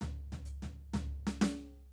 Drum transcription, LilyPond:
\new DrumStaff \drummode { \time 4/4 \tempo 4 = 125 \tuplet 3/2 { <sn tomfh>8 r8 <sn tomfh>8 hhp8 <sn tomfh>8 r8 <sn tomfh>8 r8 sn8 } sn4 | }